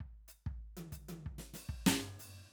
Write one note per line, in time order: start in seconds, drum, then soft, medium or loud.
0.00 kick soft
0.28 hi-hat pedal medium
0.46 kick soft
0.77 high tom medium
0.92 kick soft
0.92 hi-hat pedal medium
1.09 high tom medium
1.26 kick soft
1.38 snare soft
1.54 snare soft
1.54 hi-hat pedal medium
1.69 kick soft
1.86 snare loud
1.86 floor tom loud
2.19 hi-hat pedal medium